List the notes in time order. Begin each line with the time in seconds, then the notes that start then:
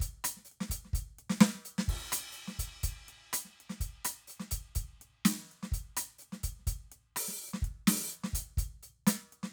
0.01 closed hi-hat, kick
0.25 open hi-hat, cross-stick
0.37 snare
0.46 hi-hat pedal
0.52 closed hi-hat
0.62 snare
0.69 closed hi-hat, kick, snare
0.86 snare
0.91 kick, snare
0.96 closed hi-hat
1.20 closed hi-hat
1.31 snare
1.42 snare
1.56 snare
1.66 closed hi-hat
1.79 snare
1.89 kick, crash
2.13 closed hi-hat, cross-stick
2.33 hi-hat pedal
2.38 closed hi-hat
2.49 snare
2.60 closed hi-hat, kick
2.84 closed hi-hat, kick
3.09 closed hi-hat
3.34 closed hi-hat, cross-stick
3.46 snare
3.61 closed hi-hat
3.71 snare
3.81 closed hi-hat, kick
4.06 closed hi-hat, cross-stick
4.28 closed hi-hat, hi-hat pedal
4.41 snare
4.52 closed hi-hat, kick
4.76 closed hi-hat, kick
4.82 kick
5.00 snare, closed hi-hat
5.26 closed hi-hat, snare
5.52 closed hi-hat
5.64 snare
5.73 closed hi-hat, kick
5.98 closed hi-hat, cross-stick
6.19 closed hi-hat, hi-hat pedal
6.33 snare
6.44 closed hi-hat, kick
6.60 snare
6.68 closed hi-hat, kick
6.93 closed hi-hat
7.17 open hi-hat, cross-stick
7.29 snare
7.43 open hi-hat
7.49 hi-hat pedal
7.54 snare
7.63 kick, closed hi-hat
7.88 open hi-hat, snare
8.12 hi-hat pedal
8.25 snare
8.34 closed hi-hat, kick
8.58 closed hi-hat, kick
8.84 closed hi-hat
9.08 closed hi-hat, snare
9.33 closed hi-hat
9.44 snare